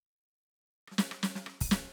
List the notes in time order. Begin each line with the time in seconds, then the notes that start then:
0.88 cross-stick, snare
0.99 snare
1.12 cross-stick
1.23 snare
1.36 snare
1.47 cross-stick
1.61 open hi-hat, kick
1.72 snare, hi-hat pedal